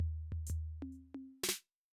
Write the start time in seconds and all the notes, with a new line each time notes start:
0.00 floor tom
0.32 floor tom
0.47 floor tom, hi-hat pedal
0.82 high tom
0.92 hi-hat pedal
1.15 high tom
1.44 snare, hi-hat pedal
1.49 snare